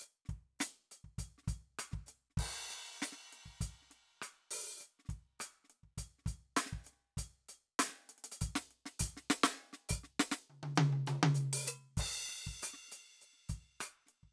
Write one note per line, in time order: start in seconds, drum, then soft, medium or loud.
0.01 hi-hat pedal medium
0.25 kick soft
0.25 snare soft
0.29 closed hi-hat soft
0.59 closed hi-hat medium
0.59 snare medium
0.59 hi-hat pedal soft
0.91 closed hi-hat soft
1.04 kick soft
1.18 closed hi-hat medium
1.18 kick soft
1.18 snare soft
1.28 kick soft
1.38 snare soft
1.44 snare soft
1.46 closed hi-hat medium
1.46 kick soft
1.46 snare soft
1.49 snare soft
1.55 kick soft
1.79 closed hi-hat medium
1.79 cross-stick medium
1.92 kick soft
1.92 snare soft
1.99 kick soft
2.06 closed hi-hat medium
2.06 hi-hat pedal soft
2.30 snare soft
2.37 kick medium
2.37 crash medium
2.44 kick soft
2.70 closed hi-hat medium
2.75 cross-stick soft
3.02 open hi-hat medium
3.02 snare medium
3.02 hi-hat pedal soft
3.12 snare soft
3.33 closed hi-hat soft
3.46 kick soft
3.61 closed hi-hat medium
3.61 kick soft
3.70 kick soft
3.82 snare soft
3.91 snare soft
3.91 closed hi-hat soft
4.22 closed hi-hat medium
4.22 cross-stick medium
4.51 open hi-hat loud
4.80 closed hi-hat soft
4.80 hi-hat pedal medium
4.99 snare soft
5.05 kick soft
5.05 snare soft
5.09 snare soft
5.09 closed hi-hat soft
5.40 closed hi-hat medium
5.40 cross-stick medium
5.40 hi-hat pedal medium
5.64 snare soft
5.70 closed hi-hat soft
5.83 kick soft
5.98 closed hi-hat medium
5.98 kick soft
6.19 snare soft
6.23 snare soft
6.24 closed hi-hat medium
6.24 kick soft
6.24 snare soft
6.33 kick soft
6.57 closed hi-hat medium
6.57 snare loud
6.66 snare soft
6.73 kick soft
6.84 closed hi-hat soft
6.84 hi-hat pedal soft
6.92 snare soft
7.17 closed hi-hat medium
7.17 kick soft
7.49 closed hi-hat soft
7.79 closed hi-hat loud
7.79 snare loud
7.89 snare soft
8.09 closed hi-hat medium
8.18 closed hi-hat soft
8.24 closed hi-hat medium
8.32 closed hi-hat medium
8.41 closed hi-hat medium
8.41 kick soft
8.48 kick soft
8.55 snare loud
8.71 closed hi-hat soft
8.86 snare medium
9.00 closed hi-hat loud
9.00 kick soft
9.07 kick soft
9.17 snare soft
9.30 snare loud
9.44 snare loud
9.73 snare soft
9.89 open hi-hat loud
9.89 kick soft
9.89 hi-hat pedal soft
9.98 kick soft
10.04 snare soft
10.20 snare loud
10.32 snare loud
10.50 high tom soft
10.63 high tom medium
10.76 hi-hat pedal soft
10.76 high tom loud
10.93 high tom soft
11.07 hi-hat pedal medium
11.07 high tom medium
11.23 high tom loud
11.35 hi-hat pedal medium
11.53 closed hi-hat loud
11.67 hi-hat pedal loud
11.67 percussion loud
11.97 kick medium
11.97 hi-hat pedal loud
11.97 crash loud
12.29 cross-stick soft
12.47 kick soft
12.63 open hi-hat loud
12.63 cross-stick medium
12.73 snare soft
12.88 closed hi-hat medium
12.88 snare soft
13.21 open hi-hat soft
13.21 hi-hat pedal soft
13.33 snare soft
13.49 closed hi-hat soft
13.49 kick soft
13.80 open hi-hat medium
13.80 cross-stick medium
13.80 hi-hat pedal soft
14.06 snare soft
14.06 closed hi-hat soft
14.23 kick soft